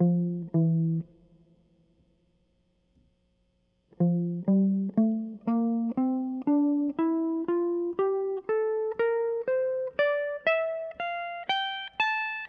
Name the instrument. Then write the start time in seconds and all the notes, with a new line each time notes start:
electric guitar
0.01 F3
0.55 E3
4.01 F3
4.49 G3
4.98 A3
5.48 A#3
5.98 C4
6.48 D4
6.99 E4
7.49 F4
7.99 G4
8.49 A4
9.00 A#4
9.48 C5
9.99 D5
10.47 E5
11.00 F5
11.50 G5
12.00 A5